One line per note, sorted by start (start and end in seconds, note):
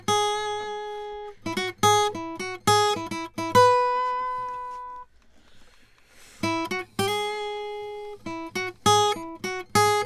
0.09 1.37 G#4
1.46 1.56 E4
1.58 1.75 F#4
1.83 2.15 G#4
2.15 2.38 E4
2.40 2.61 F#4
2.68 2.97 G#4
2.97 3.09 E4
3.12 3.30 E4
3.38 3.55 E4
3.55 5.05 B4
6.44 6.69 E4
6.71 6.86 F#4
6.99 7.17 G4
7.17 8.20 G#4
8.27 8.52 E4
8.56 8.74 F#4
8.86 9.16 G#4
9.17 9.39 E4
9.44 9.66 F#4
9.76 10.05 G#4